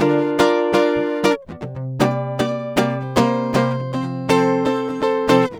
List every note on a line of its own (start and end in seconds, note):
0.00 0.33 D3
0.00 0.10 G3
0.00 0.41 D4
0.00 0.41 F4
0.00 0.40 A#4
0.00 0.37 D5
0.40 0.54 G3
0.40 0.74 D4
0.40 0.75 F4
0.40 0.75 A#4
0.40 0.75 D5
0.74 0.96 G3
0.74 1.25 D4
0.74 1.25 F4
0.74 1.25 A#4
0.74 1.25 D5
0.98 1.15 G3
1.25 1.38 G3
1.25 1.38 D4
1.25 1.40 F4
1.25 1.41 A#4
1.25 1.38 D5
1.64 1.76 C3
1.64 1.73 F3
1.77 2.01 C3
2.01 2.78 C3
2.01 2.40 G3
2.01 2.40 A#3
2.01 2.40 D5
2.40 2.76 G3
2.40 2.76 A#3
2.40 2.79 D5
2.78 3.19 C3
2.78 3.19 G3
2.78 2.99 A#3
2.78 3.03 D5
3.04 3.17 C5
3.17 3.54 C3
3.17 3.55 G3
3.17 3.56 A#3
3.17 3.57 C5
3.54 4.04 C3
3.54 3.77 G3
3.54 3.80 A#3
3.54 3.93 C5
3.80 3.92 F3
3.94 4.03 F3
3.94 4.30 C4
3.94 4.08 C5
4.04 5.17 C3
4.04 4.28 F3
4.30 4.68 F3
4.30 4.67 C4
4.30 4.66 A4
4.30 4.66 C5
4.66 4.80 F3
4.66 4.97 C4
4.66 4.90 A4
4.66 4.88 C5
4.89 5.28 F3
4.89 5.03 A4
4.89 5.04 C5
4.97 5.06 C4
5.04 5.28 C4
5.04 5.30 A4
5.04 5.31 C5
5.29 5.49 C3
5.29 5.48 F3
5.29 5.50 C4
5.29 5.44 D#4
5.29 5.50 A4
5.29 5.53 C5